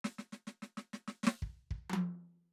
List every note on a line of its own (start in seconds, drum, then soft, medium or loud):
0.04 snare medium
0.18 snare soft
0.32 snare soft
0.47 snare soft
0.62 snare soft
0.77 snare soft
0.93 snare soft
1.08 snare soft
1.23 snare medium
1.27 snare loud
1.42 kick soft
1.71 kick soft
1.90 high tom medium
1.93 high tom loud